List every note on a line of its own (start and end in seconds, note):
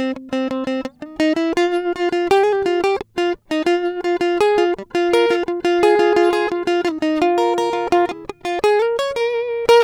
0.00 0.16 C4
0.18 0.32 C4
0.34 0.51 C4
0.52 0.69 C4
0.69 0.83 C4
1.03 1.18 D#4
1.21 1.36 D#4
1.38 1.55 E4
1.58 1.95 F4
2.03 2.14 F4
2.14 2.35 F4
2.32 2.44 G4
2.44 2.54 G#4
2.54 2.82 G4
2.67 2.86 F4
2.85 2.99 G4
3.19 3.40 F4
3.52 3.65 D#4
3.68 4.03 F4
4.06 4.18 F4
4.22 4.43 F4
4.42 4.72 G#4
4.59 4.77 F4
4.96 5.29 F4
5.14 5.43 A#4
5.32 5.46 F4
5.49 5.66 F4
5.66 5.98 F4
5.84 6.34 G#4
6.00 6.16 F4
6.18 6.32 F4
6.32 6.49 F4
6.32 6.53 G#4
6.53 6.66 F4
6.68 6.86 F4
6.86 6.97 E4
7.03 7.25 D#4
7.23 7.72 F4
7.39 7.56 A#4
7.59 7.89 A#4
7.74 7.89 F4
7.89 8.16 A#4
7.93 8.15 F4
8.46 8.62 F4
8.65 8.80 G#4
8.80 9.02 A#4
9.00 9.17 C#5
9.17 9.69 A#4
9.70 9.83 A#4